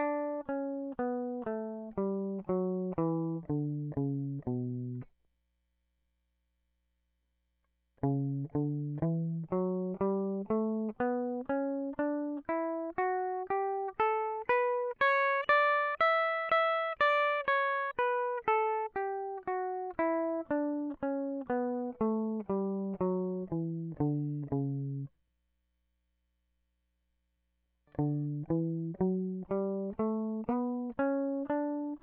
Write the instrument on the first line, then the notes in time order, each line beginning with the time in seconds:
electric guitar
0.00 D4
0.50 C#4
1.00 B3
1.48 A3
1.99 G3
2.50 F#3
3.00 E3
3.51 D3
3.99 C#3
4.49 B2
8.05 C#3
8.57 D3
9.04 E3
9.54 F#3
10.02 G3
10.52 A3
11.01 B3
11.50 C#4
12.00 D4
12.50 E4
12.99 F#4
13.51 G4
14.01 A4
14.50 B4
15.02 C#5
15.50 D5
16.01 E5
16.52 E5
17.01 D5
17.49 C#5
18.00 B4
18.49 A4
18.97 G4
19.48 F#4
20.00 E4
20.52 D4
21.04 C#4
21.51 B3
22.02 A3
22.51 G3
23.02 F#3
23.53 E3
24.02 D3
24.54 C#3
28.01 D3
28.52 E3
29.02 F#3
29.52 G3
30.01 A3
30.50 A#3
30.55 B3
31.00 C#4
31.51 D4